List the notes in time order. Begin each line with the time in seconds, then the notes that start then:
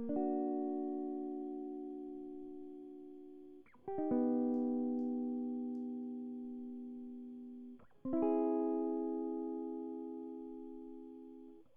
0.00 A#3
0.10 D4
0.17 F#4
3.88 G4
3.99 D#4
4.12 B3
8.06 C4
8.14 E4
8.23 G#4